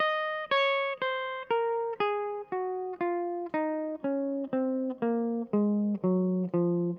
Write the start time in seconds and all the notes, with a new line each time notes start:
0.00 D#5
0.52 C#5
1.02 C5
1.51 A#4
2.01 G#4
2.53 F#4
3.01 F4
3.54 D#4
4.05 C#4
4.53 C4
5.03 A#3
5.54 G#3
6.05 F#3
6.55 F3